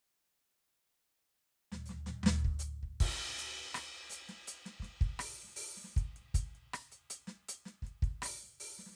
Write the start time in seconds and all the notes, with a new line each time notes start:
1.72 snare, floor tom
1.86 snare, hi-hat pedal
1.91 floor tom
2.06 snare, floor tom
2.23 snare, floor tom
2.45 kick
2.59 hi-hat pedal
2.83 kick
3.00 kick, crash, ride
3.38 hi-hat pedal
3.55 closed hi-hat
3.75 cross-stick, closed hi-hat
3.77 cross-stick
3.94 closed hi-hat
4.10 closed hi-hat, hi-hat pedal
4.29 snare, closed hi-hat
4.47 closed hi-hat, hi-hat pedal
4.66 snare, closed hi-hat
4.80 kick, snare
4.85 closed hi-hat
5.01 kick, closed hi-hat
5.19 open hi-hat, cross-stick
5.44 snare
5.46 snare
5.56 open hi-hat
5.77 snare
5.84 snare
5.89 snare
5.96 kick, closed hi-hat, hi-hat pedal
6.16 closed hi-hat
6.21 snare
6.35 closed hi-hat, kick
6.55 closed hi-hat
6.74 cross-stick, closed hi-hat
6.92 closed hi-hat
7.10 closed hi-hat
7.28 snare, closed hi-hat
7.49 closed hi-hat
7.66 snare, closed hi-hat
7.82 kick, snare
7.87 closed hi-hat
8.03 kick, closed hi-hat
8.22 open hi-hat, cross-stick
8.26 cross-stick
8.43 snare
8.60 open hi-hat
8.79 snare
8.86 snare
8.92 snare